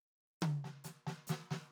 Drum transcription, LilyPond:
\new DrumStaff \drummode { \time 4/4 \tempo 4 = 140 r4 <hhp tommh>8 sn8 <hhp sn>8 sn8 <hhp sn>8 sn8 | }